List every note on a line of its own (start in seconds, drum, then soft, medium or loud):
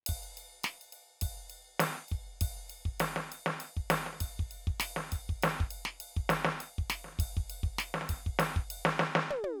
0.06 kick medium
0.06 ride loud
0.23 ride soft
0.37 ride medium
0.63 snare loud
0.63 ride medium
0.81 ride soft
0.92 ride medium
1.21 kick medium
1.21 ride loud
1.50 ride medium
1.79 snare loud
1.79 ride loud
2.08 kick medium
2.08 ride soft
2.41 kick medium
2.41 ride loud
2.69 ride medium
2.85 kick medium
3.00 snare loud
3.00 ride loud
3.16 snare medium
3.32 ride medium
3.46 snare loud
3.60 ride medium
3.77 kick soft
3.90 snare loud
3.90 ride loud
4.06 snare soft
4.13 snare soft
4.20 kick medium
4.20 ride medium
4.39 kick medium
4.51 ride medium
4.67 kick medium
4.80 snare loud
4.80 ride loud
4.96 snare medium
5.12 kick soft
5.12 ride medium
5.29 kick medium
5.42 snare loud
5.42 ride medium
5.60 kick medium
5.70 ride medium
5.85 snare loud
6.00 ride medium
6.16 kick medium
6.29 snare loud
6.29 ride medium
6.45 snare loud
6.60 ride medium
6.78 kick medium
6.90 snare loud
6.90 ride medium
7.04 snare soft
7.08 snare soft
7.12 snare soft
7.19 kick medium
7.19 ride loud
7.37 kick medium
7.50 ride medium
7.63 kick medium
7.78 snare loud
7.78 ride medium
7.94 snare medium
8.01 snare medium
8.09 kick soft
8.09 ride medium
8.26 kick medium
8.39 snare loud
8.39 ride medium
8.56 kick medium
8.70 ride medium
8.76 kick soft
8.85 snare loud
8.99 snare loud
9.15 snare loud
9.30 high tom loud
9.43 high tom loud